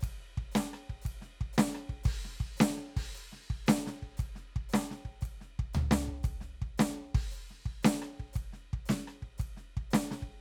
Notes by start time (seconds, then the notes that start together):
0.01 kick, hi-hat pedal, ride
0.38 kick
0.52 snare, hi-hat pedal, ride
0.74 cross-stick
0.90 kick
1.02 kick, hi-hat pedal
1.07 ride
1.22 snare
1.41 kick
1.54 hi-hat pedal
1.58 snare, ride
1.75 cross-stick
1.90 kick
2.04 kick, hi-hat pedal, crash
2.25 snare
2.41 kick
2.58 snare, hi-hat pedal, ride
2.77 snare
2.97 kick, crash
3.15 hi-hat pedal, ride
3.33 snare
3.51 kick
3.67 snare, hi-hat pedal, ride
3.87 snare
4.03 kick
4.18 kick, hi-hat pedal, ride
4.36 snare
4.57 kick
4.70 hi-hat pedal, ride
4.74 snare
4.91 snare
5.06 kick
5.22 kick, hi-hat pedal
5.26 ride
5.41 snare
5.60 kick
5.74 floor tom, hi-hat pedal
5.92 snare
6.09 kick
6.24 kick, hi-hat pedal, ride
6.41 snare
6.62 kick
6.78 snare, hi-hat pedal
6.94 snare
7.15 kick, crash
7.32 hi-hat pedal
7.36 ride
7.51 snare
7.66 kick
7.83 snare, hi-hat pedal, ride
8.02 cross-stick
8.20 kick
8.34 kick, hi-hat pedal, ride
8.53 snare
8.74 kick
8.86 snare, hi-hat pedal, ride
9.08 cross-stick
9.23 kick
9.38 kick, hi-hat pedal, ride
9.57 snare
9.77 kick
9.91 snare, hi-hat pedal
9.95 ride
10.11 snare
10.23 kick